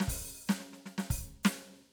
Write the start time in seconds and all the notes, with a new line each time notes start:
0.00 snare
0.08 open hi-hat, kick
0.47 snare, hi-hat pedal
0.60 snare
0.73 snare
0.86 snare
0.98 snare
1.10 open hi-hat, kick
1.44 snare, hi-hat pedal